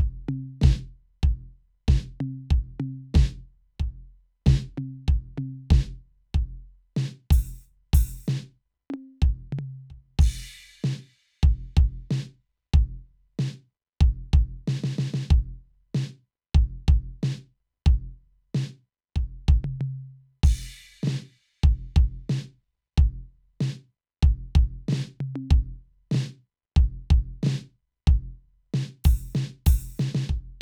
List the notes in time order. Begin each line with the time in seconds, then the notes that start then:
0.01 kick
0.31 floor tom, high tom
0.64 kick, snare
0.66 snare
1.25 kick
1.90 kick, snare
2.23 floor tom, high tom
2.53 kick
2.82 floor tom, high tom
3.17 kick, snare
3.18 snare
3.82 kick
4.49 kick, snare
4.80 floor tom, high tom
5.10 kick
5.40 floor tom, high tom
5.73 kick, snare
6.37 kick
6.99 snare
7.33 open hi-hat, kick
7.64 hi-hat pedal
7.96 open hi-hat, kick
8.27 snare, hi-hat pedal
8.93 high tom
8.96 high tom
9.24 kick
9.55 floor tom
9.61 floor tom
9.93 kick
10.21 kick, crash
10.86 snare
11.45 kick
11.79 kick
12.13 snare
12.76 kick
13.41 snare
14.03 kick
14.36 kick
14.70 snare
14.86 snare
15.01 snare
15.16 snare
15.33 kick
15.97 snare
16.57 kick
16.90 kick
17.25 snare
17.88 kick
18.57 snare
19.18 kick
19.51 kick
19.67 floor tom
19.83 floor tom
20.46 kick, crash
21.06 snare
21.10 snare
21.66 kick
21.98 kick
22.32 snare
23.00 kick
23.63 snare
24.25 kick
24.58 kick
24.91 snare
24.95 snare
25.23 floor tom
25.38 high tom
25.53 kick
26.14 snare
26.17 snare
26.79 kick
27.13 kick
27.45 snare
27.49 snare
28.10 kick
28.76 snare
29.07 open hi-hat, kick
29.34 snare, hi-hat pedal
29.53 snare
29.68 open hi-hat, kick
29.99 snare, hi-hat pedal
30.17 snare
30.32 kick